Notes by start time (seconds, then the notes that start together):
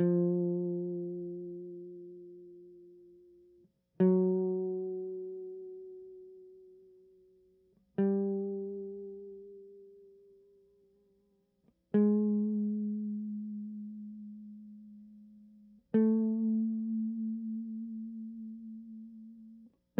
0.00 F3
4.00 F#3
7.99 G3
11.95 G#3
15.94 A3